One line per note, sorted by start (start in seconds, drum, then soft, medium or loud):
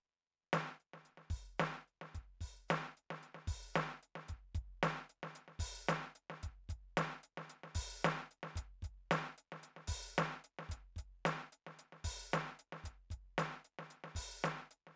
0.53 closed hi-hat medium
0.53 snare medium
0.80 closed hi-hat soft
0.93 snare soft
1.05 closed hi-hat soft
1.17 snare soft
1.30 kick soft
1.30 open hi-hat medium
1.58 snare medium
1.58 closed hi-hat medium
1.58 hi-hat pedal soft
1.87 closed hi-hat soft
2.01 snare soft
2.14 kick soft
2.14 closed hi-hat medium
2.41 kick soft
2.41 open hi-hat medium
2.68 closed hi-hat medium
2.68 snare medium
2.68 hi-hat pedal medium
2.97 closed hi-hat soft
3.10 snare soft
3.23 closed hi-hat soft
3.34 snare soft
3.47 kick soft
3.47 open hi-hat medium
3.73 snare medium
3.73 closed hi-hat medium
3.73 hi-hat pedal medium
4.02 closed hi-hat soft
4.15 snare soft
4.28 kick soft
4.28 closed hi-hat medium
4.54 kick soft
4.54 closed hi-hat medium
4.83 snare medium
4.83 closed hi-hat medium
5.09 closed hi-hat soft
5.23 snare soft
5.35 closed hi-hat medium
5.48 snare soft
5.59 kick soft
5.59 open hi-hat loud
5.87 snare medium
5.87 closed hi-hat loud
5.87 hi-hat pedal medium
6.15 closed hi-hat medium
6.30 snare soft
6.43 kick soft
6.43 closed hi-hat medium
6.69 kick soft
6.69 closed hi-hat medium
6.97 snare medium
6.97 closed hi-hat loud
7.23 closed hi-hat medium
7.37 snare soft
7.49 closed hi-hat medium
7.63 snare soft
7.75 kick soft
7.75 open hi-hat loud
8.02 snare medium
8.02 closed hi-hat loud
8.02 hi-hat pedal medium
8.31 closed hi-hat soft
8.43 snare soft
8.55 kick soft
8.55 closed hi-hat loud
8.82 kick soft
8.82 closed hi-hat medium
9.11 snare medium
9.11 closed hi-hat loud
9.38 closed hi-hat medium
9.52 snare soft
9.63 closed hi-hat medium
9.76 snare soft
9.87 kick soft
9.87 open hi-hat loud
10.17 snare medium
10.17 closed hi-hat loud
10.17 hi-hat pedal medium
10.44 closed hi-hat medium
10.58 snare soft
10.69 kick soft
10.69 closed hi-hat loud
10.96 kick soft
10.96 closed hi-hat medium
11.25 snare medium
11.25 closed hi-hat loud
11.52 closed hi-hat medium
11.66 snare soft
11.79 closed hi-hat medium
11.92 snare soft
12.04 kick soft
12.04 open hi-hat loud
12.32 snare medium
12.32 closed hi-hat loud
12.32 hi-hat pedal medium
12.59 closed hi-hat medium
12.72 snare soft
12.84 kick soft
12.84 closed hi-hat medium
13.10 kick soft
13.10 closed hi-hat medium
13.38 snare medium
13.38 closed hi-hat loud
13.64 closed hi-hat medium
13.78 snare soft
13.90 closed hi-hat medium
14.04 snare soft
14.15 kick soft
14.15 open hi-hat loud
14.44 snare medium
14.44 closed hi-hat medium
14.44 hi-hat pedal medium
14.71 closed hi-hat medium
14.87 snare soft